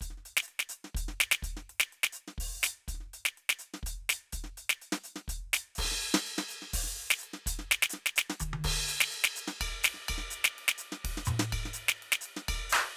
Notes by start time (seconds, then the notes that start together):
0.01 closed hi-hat, kick
0.10 snare
0.18 snare
0.25 closed hi-hat
0.37 snare
0.43 hi-hat pedal
0.48 closed hi-hat
0.59 snare
0.69 closed hi-hat, hi-hat pedal
0.84 snare
0.95 closed hi-hat, kick
1.01 kick
1.08 snare
1.20 snare
1.32 snare
1.43 closed hi-hat, kick
1.48 kick
1.57 snare
1.70 closed hi-hat
1.80 snare
1.93 closed hi-hat
2.04 snare
2.13 closed hi-hat, hi-hat pedal
2.28 snare
2.38 open hi-hat, kick
2.46 kick
2.61 closed hi-hat, snare, hi-hat pedal
2.88 closed hi-hat, kick
2.94 snare
3.00 snare
3.06 snare
3.14 closed hi-hat
3.25 snare
3.38 closed hi-hat
3.50 snare
3.59 closed hi-hat, hi-hat pedal
3.74 snare
3.83 closed hi-hat, kick
4.09 closed hi-hat, snare
4.33 closed hi-hat, kick
4.44 snare
4.57 closed hi-hat
4.70 snare
4.82 closed hi-hat
4.92 snare
5.04 closed hi-hat, hi-hat pedal
5.16 snare
5.28 closed hi-hat, kick
5.53 closed hi-hat, snare
5.75 kick, hi-hat pedal, crash
5.84 kick, snare
5.88 kick
5.92 snare
6.02 closed hi-hat
6.14 snare
6.20 hi-hat pedal
6.26 closed hi-hat
6.38 snare
6.49 closed hi-hat, hi-hat pedal
6.62 snare
6.74 open hi-hat, kick
6.80 kick, snare
6.99 open hi-hat
7.11 snare
7.19 hi-hat pedal
7.23 closed hi-hat
7.34 snare
7.46 closed hi-hat, kick
7.53 kick
7.56 kick, snare
7.71 snare
7.83 snare
7.90 snare, hi-hat pedal
8.06 snare
8.16 snare, hi-hat pedal
8.30 snare
8.40 kick, hi-hat pedal, high tom
8.50 kick, high tom
8.64 kick, crash
8.73 kick
8.88 hi-hat pedal, ride
9.01 snare
9.11 hi-hat pedal, ride
9.24 snare
9.36 hi-hat pedal
9.48 snare
9.61 kick, ride bell
9.69 kick
9.84 snare, hi-hat pedal, ride
9.94 snare
10.09 kick, ride bell
10.15 kick, snare
10.31 hi-hat pedal, ride
10.45 snare
10.59 ride
10.68 snare
10.78 hi-hat pedal, ride
10.92 snare
11.05 kick, ride
11.11 kick
11.14 kick, snare
11.25 hi-hat pedal, mid tom
11.39 snare
11.53 kick, ride bell
11.59 kick
11.62 kick, snare
11.74 hi-hat pedal
11.78 ride
11.89 snare
11.95 hi-hat pedal
12.03 ride
12.12 snare
12.21 hi-hat pedal
12.26 ride
12.37 snare
12.49 kick, ride bell
12.55 kick
12.58 kick
12.70 percussion, hi-hat pedal, ride